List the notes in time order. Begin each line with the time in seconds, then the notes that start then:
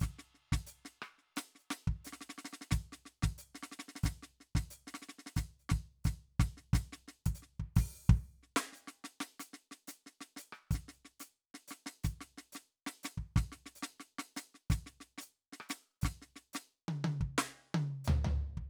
0.01 kick, snare, hi-hat pedal
0.19 snare
0.35 snare
0.53 kick, snare
0.67 hi-hat pedal
0.85 snare
1.02 cross-stick
1.19 snare
1.37 snare, hi-hat pedal
1.56 snare, hi-hat pedal
1.71 snare
1.88 kick
2.05 snare, hi-hat pedal
2.13 snare
2.21 snare
2.30 snare
2.38 snare
2.45 snare
2.53 snare
2.62 snare
2.71 kick, snare, hi-hat pedal
2.93 snare, hi-hat pedal
3.06 snare
3.23 kick, snare
3.38 hi-hat pedal
3.55 snare
3.63 snare
3.72 snare
3.80 snare
3.89 snare
3.96 snare
4.04 kick, snare, hi-hat pedal
4.23 snare
4.41 snare
4.56 kick, snare
4.71 hi-hat pedal
4.88 snare
4.94 snare, hi-hat pedal
5.02 snare
5.09 snare
5.19 snare
5.27 snare
5.37 kick, snare, hi-hat pedal
5.60 hi-hat pedal
5.70 kick, snare
6.05 kick, snare, hi-hat pedal
6.40 kick, snare
6.58 snare
6.74 kick, snare, hi-hat pedal
6.93 snare
7.08 snare
7.26 kick, open hi-hat
7.35 hi-hat pedal
7.43 snare
7.60 kick
7.76 open hi-hat, kick, snare
8.10 kick
8.43 snare
8.57 snare
8.73 snare, hi-hat pedal
8.88 snare
9.05 snare
9.21 snare
9.40 snare, hi-hat pedal
9.54 snare
9.72 snare
9.88 snare, hi-hat pedal
10.07 snare
10.21 snare
10.37 snare, hi-hat pedal
10.53 cross-stick
10.71 kick, snare, hi-hat pedal
10.89 snare
10.93 hi-hat pedal
11.05 snare
11.20 snare, hi-hat pedal
11.55 snare
11.68 snare, hi-hat pedal
11.87 snare
12.04 kick, snare, hi-hat pedal
12.21 snare
12.38 snare
12.53 snare, hi-hat pedal
12.87 snare
13.04 snare, hi-hat pedal
13.18 kick
13.36 kick, snare
13.52 snare
13.66 snare
13.76 hi-hat pedal
13.83 snare
14.00 snare
14.19 snare
14.37 snare, hi-hat pedal
14.55 snare
14.70 kick, snare, hi-hat pedal
14.87 snare
15.01 snare
15.18 snare, hi-hat pedal
15.53 snare
15.61 cross-stick
15.70 snare, hi-hat pedal
16.02 kick, snare, hi-hat pedal
16.22 snare
16.36 snare
16.54 snare, hi-hat pedal
16.89 high tom
17.05 high tom
17.21 kick
17.38 snare
17.75 high tom
18.05 floor tom, hi-hat pedal
18.25 floor tom
18.58 kick